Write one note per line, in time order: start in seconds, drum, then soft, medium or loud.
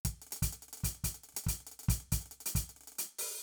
0.04 kick medium
0.04 closed hi-hat loud
0.22 closed hi-hat medium
0.27 closed hi-hat soft
0.31 closed hi-hat soft
0.31 closed hi-hat loud
0.36 closed hi-hat medium
0.42 closed hi-hat loud
0.42 kick medium
0.53 closed hi-hat medium
0.62 closed hi-hat medium
0.68 closed hi-hat soft
0.73 closed hi-hat medium
0.77 closed hi-hat medium
0.80 kick medium
0.80 closed hi-hat soft
0.84 closed hi-hat loud
0.95 closed hi-hat soft
1.04 closed hi-hat loud
1.04 kick soft
1.14 closed hi-hat medium
1.23 closed hi-hat medium
1.29 closed hi-hat soft
1.32 kick soft
1.32 closed hi-hat soft
1.35 closed hi-hat soft
1.36 closed hi-hat loud
1.44 kick medium
1.44 closed hi-hat medium
1.48 closed hi-hat loud
1.60 closed hi-hat soft
1.67 closed hi-hat medium
1.71 closed hi-hat medium
1.79 closed hi-hat medium
1.83 closed hi-hat medium
1.88 closed hi-hat loud
1.88 kick medium
2.00 closed hi-hat soft
2.12 closed hi-hat loud
2.12 kick medium
2.21 closed hi-hat medium
2.26 closed hi-hat soft
2.31 closed hi-hat medium
2.40 closed hi-hat medium
2.46 closed hi-hat loud
2.55 closed hi-hat loud
2.55 kick medium
2.69 closed hi-hat medium
2.76 closed hi-hat soft
2.81 closed hi-hat soft
2.83 closed hi-hat soft
2.87 closed hi-hat medium
2.92 closed hi-hat soft
2.95 closed hi-hat soft
2.98 closed hi-hat loud
3.19 open hi-hat loud